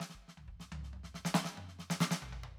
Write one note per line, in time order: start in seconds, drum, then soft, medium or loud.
0.01 snare medium
0.10 snare soft
0.15 kick soft
0.28 snare soft
0.38 mid tom soft
0.48 kick soft
0.60 snare soft
0.72 mid tom medium
0.83 snare soft
0.93 high tom soft
1.04 snare soft
1.15 snare soft
1.25 snare medium
1.35 snare loud
1.45 snare medium
1.58 high tom medium
1.68 snare soft
1.79 snare soft
1.90 snare loud
2.01 snare loud
2.11 snare loud
2.22 floor tom medium
2.33 floor tom medium
2.44 floor tom soft